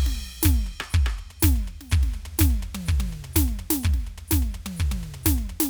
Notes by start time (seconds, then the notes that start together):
0.07 snare
0.42 snare, hi-hat pedal
0.46 kick
0.67 floor tom
0.81 cross-stick
0.91 kick, floor tom, hi-hat pedal
1.07 cross-stick
1.19 floor tom
1.31 floor tom
1.41 kick, snare, hi-hat pedal
1.56 floor tom
1.63 hi-hat pedal
1.68 floor tom
1.81 snare
1.90 kick, floor tom, hi-hat pedal
2.04 snare
2.13 floor tom, hi-hat pedal
2.26 floor tom
2.39 kick, snare, hi-hat pedal
2.51 floor tom
2.63 floor tom
2.75 high tom
2.86 kick, floor tom, hi-hat pedal
3.00 high tom
3.08 hi-hat pedal
3.13 floor tom
3.25 floor tom
3.34 kick, snare, hi-hat pedal
3.48 floor tom
3.56 floor tom, hi-hat pedal
3.71 snare
3.81 kick, floor tom, hi-hat pedal
3.94 snare
4.04 floor tom, hi-hat pedal
4.18 floor tom
4.28 snare, hi-hat pedal
4.33 kick
4.43 floor tom
4.51 floor tom, hi-hat pedal
4.67 high tom
4.77 kick, floor tom, hi-hat pedal
4.92 high tom
5.00 hi-hat pedal
5.04 floor tom
5.14 floor tom
5.24 kick, snare, hi-hat pedal
5.38 floor tom
5.50 floor tom
5.61 snare